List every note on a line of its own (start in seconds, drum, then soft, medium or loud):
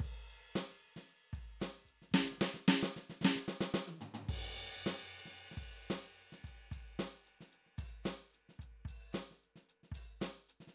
0.01 kick soft
0.01 crash medium
0.28 open hi-hat soft
0.56 snare loud
0.56 closed hi-hat medium
0.56 hi-hat pedal medium
0.83 closed hi-hat soft
0.97 snare soft
1.09 closed hi-hat soft
1.34 kick soft
1.34 open hi-hat medium
1.61 snare medium
1.61 closed hi-hat medium
1.61 hi-hat pedal medium
1.82 kick soft
1.82 snare soft
1.88 closed hi-hat soft
2.02 snare soft
2.08 snare soft
2.12 kick soft
2.12 snare loud
2.25 snare soft
2.32 snare soft
2.39 snare soft
2.42 snare loud
2.55 snare soft
2.69 snare loud
2.69 hi-hat pedal medium
2.83 snare loud
2.97 snare soft
3.10 snare soft
3.22 snare medium
3.25 snare loud
3.36 snare soft
3.49 snare medium
3.61 snare loud
3.75 snare loud
3.88 high tom medium
4.01 floor tom medium
4.15 floor tom medium
4.29 kick soft
4.29 ride loud
4.87 snare loud
4.87 closed hi-hat medium
5.13 closed hi-hat soft
5.26 snare soft
5.38 closed hi-hat medium
5.52 snare soft
5.58 kick soft
5.64 open hi-hat medium
5.91 snare medium
5.91 closed hi-hat medium
5.91 hi-hat pedal medium
6.19 closed hi-hat soft
6.33 snare soft
6.45 kick soft
6.45 closed hi-hat medium
6.72 kick soft
6.72 open hi-hat medium
7.00 snare medium
7.00 closed hi-hat medium
7.00 hi-hat pedal medium
7.27 closed hi-hat medium
7.41 snare soft
7.53 closed hi-hat medium
7.67 snare soft
7.79 kick soft
7.79 open hi-hat medium
8.04 snare medium
8.04 closed hi-hat medium
8.04 hi-hat pedal medium
8.34 closed hi-hat soft
8.50 snare soft
8.60 kick soft
8.60 closed hi-hat medium
8.86 kick soft
8.86 open hi-hat medium
9.13 snare medium
9.13 closed hi-hat loud
9.13 hi-hat pedal medium
9.32 snare soft
9.43 closed hi-hat soft
9.56 snare soft
9.69 closed hi-hat medium
9.84 snare soft
9.92 kick soft
9.92 open hi-hat medium
10.21 closed hi-hat loud
10.21 snare medium
10.21 hi-hat pedal medium
10.40 snare soft
10.49 closed hi-hat medium
10.61 snare soft
10.68 snare soft